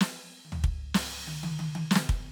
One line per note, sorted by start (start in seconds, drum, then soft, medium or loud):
0.01 snare loud
0.01 crash medium
0.45 high tom medium
0.52 floor tom loud
0.64 kick medium
0.95 snare loud
0.95 crash loud
1.27 high tom loud
1.43 high tom loud
1.59 high tom loud
1.75 high tom loud
1.91 snare loud
1.96 snare loud
2.09 kick medium